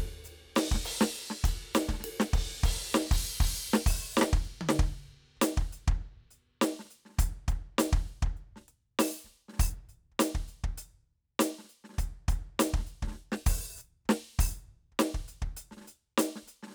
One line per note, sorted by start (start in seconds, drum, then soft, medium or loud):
0.24 hi-hat pedal medium
0.24 ride medium
0.45 kick soft
0.53 kick soft
0.53 snare loud
0.53 hi-hat pedal medium
0.53 ride loud
0.71 kick loud
0.71 snare medium
0.85 hi-hat pedal medium
0.85 crash loud
1.01 snare loud
1.16 ride medium
1.30 snare medium
1.44 kick loud
1.44 hi-hat pedal soft
1.44 ride bell loud
1.74 snare loud
1.74 hi-hat pedal medium
1.74 ride bell loud
1.89 kick medium
1.89 snare medium
1.94 snare soft
2.00 snare soft
2.04 ride loud
2.20 snare loud
2.30 kick loud
2.30 hi-hat pedal soft
2.34 ride loud
2.63 kick loud
2.63 hi-hat pedal medium
2.63 crash loud
2.92 snare loud
2.92 hi-hat pedal medium
3.11 kick loud
3.11 crash loud
3.23 hi-hat pedal medium
3.40 kick loud
3.40 crash loud
3.55 hi-hat pedal loud
3.73 snare loud
3.86 open hi-hat loud
3.86 kick loud
4.17 snare loud
4.17 hi-hat pedal medium
4.21 snare loud
4.33 kick loud
4.44 hi-hat pedal soft
4.61 high tom loud
4.69 snare loud
4.79 kick loud
5.37 kick soft
5.42 closed hi-hat loud
5.42 snare loud
5.57 kick loud
5.73 closed hi-hat medium
5.88 kick loud
6.31 closed hi-hat soft
6.62 closed hi-hat medium
6.62 snare loud
6.79 snare soft
6.85 snare soft
6.90 closed hi-hat soft
7.05 snare soft
7.09 snare soft
7.13 snare soft
7.16 closed hi-hat loud
7.16 kick loud
7.16 snare soft
7.48 kick loud
7.48 closed hi-hat medium
7.78 closed hi-hat loud
7.78 snare loud
7.93 kick loud
8.08 closed hi-hat soft
8.22 kick loud
8.37 closed hi-hat soft
8.56 snare soft
8.60 snare soft
8.68 closed hi-hat soft
8.99 open hi-hat loud
8.99 snare loud
9.24 kick soft
9.24 snare soft
9.48 snare soft
9.53 snare soft
9.56 snare soft
9.59 open hi-hat loud
9.59 kick loud
9.59 snare soft
9.59 hi-hat pedal soft
9.89 closed hi-hat soft
10.12 kick soft
10.19 closed hi-hat loud
10.19 snare loud
10.35 kick medium
10.48 closed hi-hat soft
10.64 kick medium
10.64 crash soft
10.78 closed hi-hat medium
11.39 closed hi-hat loud
11.39 snare loud
11.59 snare soft
11.64 snare soft
11.69 closed hi-hat soft
11.84 snare soft
11.89 snare soft
11.93 snare soft
11.96 closed hi-hat medium
11.96 kick medium
11.96 snare soft
12.28 closed hi-hat medium
12.28 kick loud
12.59 closed hi-hat loud
12.59 snare loud
12.74 kick loud
12.79 snare soft
12.86 closed hi-hat soft
13.02 kick medium
13.02 snare soft
13.02 crash soft
13.08 snare soft
13.11 snare soft
13.13 snare soft
13.18 closed hi-hat soft
13.32 snare medium
13.46 open hi-hat loud
13.46 kick loud
13.78 hi-hat pedal medium
14.05 kick soft
14.05 snare loud
14.39 open hi-hat loud
14.39 kick loud
14.92 kick soft
14.99 open hi-hat loud
14.99 snare loud
14.99 hi-hat pedal medium
15.14 kick medium
15.28 closed hi-hat soft
15.42 kick medium
15.42 crash soft
15.46 ride soft
15.57 closed hi-hat medium
15.71 snare soft
15.77 snare soft
15.81 snare soft
15.84 snare soft
15.87 closed hi-hat soft
15.87 snare soft
16.18 closed hi-hat loud
16.18 snare loud
16.36 snare soft
16.42 kick soft
16.42 snare soft
16.48 closed hi-hat soft
16.63 snare soft
16.67 snare soft
16.70 snare soft